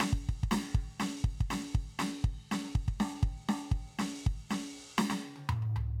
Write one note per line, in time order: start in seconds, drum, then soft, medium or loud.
0.01 open hi-hat loud
0.01 snare loud
0.13 kick medium
0.22 open hi-hat soft
0.29 kick soft
0.43 kick soft
0.51 open hi-hat medium
0.51 snare loud
0.75 kick medium
1.00 open hi-hat loud
1.00 snare loud
1.24 open hi-hat soft
1.24 kick medium
1.40 kick medium
1.50 open hi-hat medium
1.50 snare loud
1.75 kick medium
1.98 snare loud
1.98 crash medium
2.24 kick medium
2.24 open hi-hat soft
2.51 open hi-hat medium
2.51 snare loud
2.65 snare soft
2.70 snare soft
2.75 open hi-hat soft
2.75 kick medium
2.88 kick soft
2.99 open hi-hat medium
2.99 snare loud
3.06 snare soft
3.14 snare soft
3.18 snare soft
3.21 kick medium
3.21 snare soft
3.49 open hi-hat medium
3.49 snare loud
3.54 snare soft
3.71 open hi-hat soft
3.71 kick medium
3.99 open hi-hat loud
3.99 snare loud
4.21 open hi-hat soft
4.26 kick medium
4.50 open hi-hat loud
4.50 snare loud
4.75 open hi-hat soft
4.98 snare loud
5.10 snare loud
5.23 high tom soft
5.36 high tom medium
5.49 mid tom loud
5.62 mid tom medium
5.76 floor tom loud